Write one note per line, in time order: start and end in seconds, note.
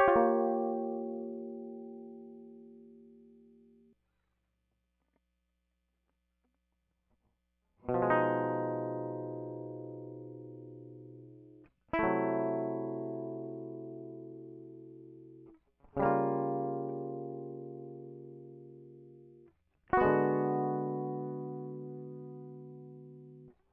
0.00 4.18 G4
0.08 3.85 F4
0.17 4.28 A#3
7.90 11.71 B2
7.95 11.69 F3
8.03 11.65 G#3
8.11 11.69 D#4
11.94 15.60 E4
12.00 15.54 A3
12.04 15.54 C3
12.04 15.54 F#3
15.98 19.52 C#3
15.98 19.52 G3
16.03 19.50 A#3
16.03 19.52 F4
19.94 23.54 F#4
19.98 23.54 B3
20.02 23.55 G#3
20.06 23.54 D3